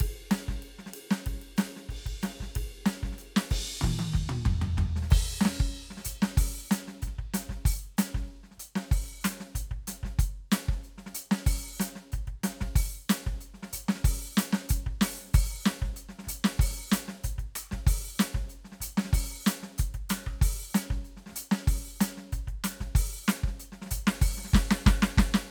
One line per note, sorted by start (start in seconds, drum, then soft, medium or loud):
0.01 kick medium
0.01 ride loud
0.32 snare loud
0.32 hi-hat pedal medium
0.32 ride medium
0.49 kick medium
0.49 snare soft
0.58 snare soft
0.63 ride medium
0.79 snare soft
0.87 snare medium
0.94 hi-hat pedal medium
0.94 ride loud
1.12 snare loud
1.27 kick medium
1.27 ride medium
1.43 ride soft
1.58 snare loud
1.58 hi-hat pedal medium
1.58 ride loud
1.77 snare soft
1.90 kick soft
1.90 ride medium
2.07 kick medium
2.07 ride medium
2.23 snare loud
2.23 hi-hat pedal medium
2.23 ride medium
2.41 kick soft
2.41 snare soft
2.56 kick medium
2.56 ride loud
2.86 kick soft
2.86 snare loud
2.86 hi-hat pedal medium
2.86 ride medium
3.04 kick medium
3.04 snare soft
3.13 snare soft
3.16 snare soft
3.16 hi-hat pedal medium
3.16 ride medium
3.20 snare soft
3.37 snare loud
3.52 kick medium
3.52 hi-hat pedal soft
3.52 ride loud
3.82 kick medium
3.82 mid tom loud
3.82 high tom loud
4.00 high tom loud
4.14 kick medium
4.14 floor tom medium
4.14 hi-hat pedal soft
4.30 mid tom loud
4.46 kick medium
4.46 floor tom loud
4.62 floor tom loud
4.78 kick medium
4.78 floor tom loud
4.97 snare medium
5.03 snare soft
5.07 kick soft
5.07 snare soft
5.11 kick loud
5.11 hi-hat pedal medium
5.11 crash loud
5.42 snare loud
5.42 hi-hat pedal medium
5.46 snare loud
5.61 kick medium
5.66 snare soft
5.75 closed hi-hat soft
5.91 snare soft
5.98 snare medium
6.00 snare soft
6.06 closed hi-hat loud
6.06 kick soft
6.23 snare loud
6.38 open hi-hat loud
6.38 kick loud
6.71 closed hi-hat loud
6.71 snare loud
6.71 hi-hat pedal soft
6.88 snare medium
7.03 closed hi-hat medium
7.03 kick medium
7.08 snare soft
7.19 kick medium
7.19 closed hi-hat soft
7.35 closed hi-hat loud
7.35 snare loud
7.50 kick medium
7.50 snare soft
7.66 open hi-hat loud
7.66 kick loud
7.98 closed hi-hat loud
7.98 snare loud
7.98 hi-hat pedal soft
8.15 kick medium
8.15 snare soft
8.23 snare soft
8.29 closed hi-hat soft
8.44 snare soft
8.52 snare soft
8.59 closed hi-hat medium
8.59 kick soft
8.76 snare loud
8.92 open hi-hat loud
8.92 kick loud
9.08 open hi-hat soft
9.24 closed hi-hat loud
9.24 snare loud
9.24 hi-hat pedal medium
9.41 snare medium
9.56 closed hi-hat loud
9.56 kick medium
9.72 kick medium
9.72 closed hi-hat soft
9.88 closed hi-hat loud
9.88 snare medium
10.04 kick medium
10.04 snare medium
10.20 open hi-hat loud
10.20 kick loud
10.52 open hi-hat loud
10.52 snare loud
10.52 hi-hat pedal soft
10.69 kick medium
10.69 snare soft
10.84 closed hi-hat soft
10.99 snare soft
11.07 snare medium
11.14 closed hi-hat loud
11.14 kick soft
11.32 snare loud
11.47 open hi-hat loud
11.47 kick loud
11.80 closed hi-hat loud
11.80 snare loud
11.80 hi-hat pedal medium
11.96 snare medium
12.13 closed hi-hat medium
12.13 kick medium
12.28 kick soft
12.28 closed hi-hat soft
12.44 closed hi-hat loud
12.44 snare loud
12.61 kick medium
12.61 snare medium
12.76 open hi-hat loud
12.76 kick loud
13.09 closed hi-hat loud
13.09 snare loud
13.09 hi-hat pedal medium
13.27 kick medium
13.27 snare soft
13.41 closed hi-hat medium
13.55 snare soft
13.63 snare medium
13.67 snare soft
13.74 closed hi-hat loud
13.74 kick soft
13.89 snare loud
13.96 snare soft
14.05 open hi-hat loud
14.05 kick loud
14.37 closed hi-hat loud
14.37 snare loud
14.37 hi-hat pedal medium
14.53 snare loud
14.70 closed hi-hat loud
14.70 kick medium
14.87 kick medium
15.02 open hi-hat loud
15.02 kick soft
15.02 snare loud
15.35 open hi-hat loud
15.35 kick loud
15.66 snare loud
15.66 hi-hat pedal medium
15.83 kick medium
15.83 snare soft
15.97 closed hi-hat medium
16.10 snare soft
16.19 snare medium
16.25 kick soft
16.25 snare soft
16.29 closed hi-hat loud
16.45 snare loud
16.60 open hi-hat loud
16.60 kick loud
16.92 closed hi-hat loud
16.92 kick soft
16.92 snare loud
16.92 hi-hat pedal medium
17.09 snare medium
17.25 closed hi-hat medium
17.25 kick medium
17.39 kick medium
17.39 closed hi-hat medium
17.56 closed hi-hat loud
17.56 cross-stick medium
17.72 kick medium
17.72 snare medium
17.88 open hi-hat loud
17.88 kick loud
18.18 open hi-hat loud
18.18 kick soft
18.18 snare loud
18.18 hi-hat pedal medium
18.35 kick medium
18.35 snare soft
18.49 closed hi-hat medium
18.49 hi-hat pedal soft
18.58 kick soft
18.65 snare soft
18.73 snare soft
18.81 closed hi-hat loud
18.81 kick soft
18.81 snare soft
18.98 snare loud
19.06 snare medium
19.14 open hi-hat loud
19.14 kick loud
19.31 open hi-hat soft
19.47 closed hi-hat loud
19.47 snare loud
19.47 hi-hat pedal medium
19.64 snare medium
19.79 closed hi-hat loud
19.79 kick medium
19.95 kick soft
19.95 closed hi-hat medium
20.10 closed hi-hat loud
20.10 snare loud
20.27 kick medium
20.27 cross-stick medium
20.42 open hi-hat loud
20.42 kick loud
20.75 open hi-hat loud
20.75 snare loud
20.75 hi-hat pedal soft
20.91 kick medium
20.91 snare soft
21.05 closed hi-hat soft
21.18 snare soft
21.27 snare soft
21.30 snare soft
21.32 kick soft
21.32 snare soft
21.35 closed hi-hat loud
21.35 snare soft
21.52 snare loud
21.68 open hi-hat loud
21.68 kick loud
21.85 open hi-hat soft
22.00 closed hi-hat loud
22.00 snare loud
22.00 hi-hat pedal medium
22.18 snare soft
22.33 closed hi-hat medium
22.33 kick medium
22.48 kick medium
22.48 closed hi-hat soft
22.65 closed hi-hat loud
22.65 snare medium
22.81 kick medium
22.81 snare medium
22.96 open hi-hat loud
22.96 kick loud
23.29 open hi-hat loud
23.29 snare loud
23.29 hi-hat pedal medium
23.44 kick medium
23.44 snare soft
23.61 closed hi-hat medium
23.73 snare soft
23.82 snare medium
23.87 snare soft
23.92 closed hi-hat loud
23.92 kick medium
24.08 snare loud
24.22 open hi-hat loud
24.22 kick loud
24.38 snare soft
24.45 snare soft
24.49 snare soft
24.52 kick loud
24.52 snare soft
24.55 snare loud
24.72 snare loud
24.87 kick loud
24.87 snare loud
24.87 hi-hat pedal medium
25.03 snare loud
25.18 kick loud
25.18 snare loud
25.35 snare loud